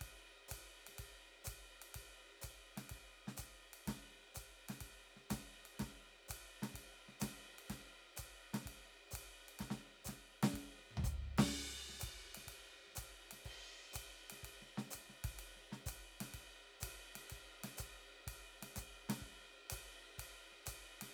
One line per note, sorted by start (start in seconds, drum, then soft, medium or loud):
0.01 kick soft
0.01 ride medium
0.48 kick soft
0.48 hi-hat pedal medium
0.48 ride medium
0.87 snare soft
0.87 ride medium
0.98 kick soft
0.98 ride medium
1.44 kick soft
1.44 hi-hat pedal medium
1.44 ride medium
1.82 ride medium
1.94 kick soft
1.94 ride medium
2.42 kick soft
2.42 hi-hat pedal medium
2.42 ride medium
2.77 snare soft
2.77 ride medium
2.90 kick soft
2.90 ride medium
3.27 snare soft
3.37 kick soft
3.37 hi-hat pedal medium
3.37 ride medium
3.73 ride medium
3.84 kick soft
3.84 snare soft
3.84 hi-hat pedal soft
3.84 ride medium
4.35 kick soft
4.35 hi-hat pedal medium
4.35 ride medium
4.69 snare soft
4.69 ride medium
4.81 kick soft
4.81 ride medium
5.16 snare soft
5.30 kick soft
5.30 snare soft
5.30 hi-hat pedal medium
5.30 ride medium
5.65 ride soft
5.79 kick soft
5.79 snare soft
5.79 ride medium
6.28 kick soft
6.28 hi-hat pedal medium
6.28 ride medium
6.62 snare soft
6.62 ride medium
6.74 kick soft
6.74 ride medium
7.08 snare soft
7.20 kick soft
7.20 snare soft
7.20 hi-hat pedal medium
7.20 ride medium
7.58 ride soft
7.65 hi-hat pedal soft
7.70 kick soft
7.70 snare soft
7.70 ride medium
7.80 snare soft
8.17 kick soft
8.17 hi-hat pedal medium
8.17 ride medium
8.54 snare soft
8.54 ride medium
8.66 kick soft
8.66 ride medium
9.11 kick soft
9.11 hi-hat pedal medium
9.15 ride medium
9.48 ride soft
9.57 kick soft
9.57 snare soft
9.57 hi-hat pedal soft
9.57 ride medium
9.70 snare soft
10.05 kick soft
10.05 snare soft
10.05 hi-hat pedal medium
10.05 ride medium
10.43 snare medium
10.43 ride medium
10.54 kick soft
10.54 ride medium
10.91 high tom soft
10.97 floor tom medium
11.04 kick soft
11.04 hi-hat pedal medium
11.38 snare medium
11.38 crash medium
11.51 hi-hat pedal soft
11.89 snare soft
11.93 snare soft
12.00 kick soft
12.00 hi-hat pedal medium
12.00 ride medium
12.35 snare soft
12.35 ride medium
12.47 kick soft
12.47 ride medium
12.87 snare soft
12.90 snare soft
12.93 snare soft
12.93 hi-hat pedal medium
12.97 kick soft
12.97 ride medium
13.31 snare soft
13.31 ride medium
13.44 kick soft
13.44 hi-hat pedal soft
13.44 ride medium
13.93 kick soft
13.93 hi-hat pedal medium
13.93 ride medium
14.30 snare soft
14.30 ride medium
14.43 kick soft
14.43 ride medium
14.61 snare soft
14.77 snare soft
14.91 kick soft
14.91 hi-hat pedal medium
14.91 ride medium
15.09 snare soft
15.24 kick soft
15.24 ride medium
15.37 hi-hat pedal soft
15.37 ride medium
15.56 snare soft
15.72 snare soft
15.86 kick soft
15.86 hi-hat pedal medium
15.86 ride medium
16.20 snare soft
16.20 ride medium
16.34 kick soft
16.34 ride medium
16.80 kick soft
16.80 hi-hat pedal medium
16.80 ride loud
17.15 snare soft
17.15 ride medium
17.29 kick soft
17.29 hi-hat pedal soft
17.29 ride medium
17.64 snare soft
17.64 ride medium
17.77 kick soft
17.77 hi-hat pedal medium
17.77 ride medium
18.27 kick soft
18.27 ride medium
18.62 snare soft
18.62 ride medium
18.75 kick soft
18.75 snare soft
18.75 hi-hat pedal medium
18.75 ride medium
19.09 snare medium
19.09 ride medium
19.22 kick soft
19.70 kick soft
19.70 hi-hat pedal medium
19.70 ride loud
20.18 kick soft
20.18 hi-hat pedal soft
20.18 ride medium
20.51 snare soft
20.66 kick soft
20.66 hi-hat pedal medium
20.66 ride medium
21.01 snare soft
21.01 ride medium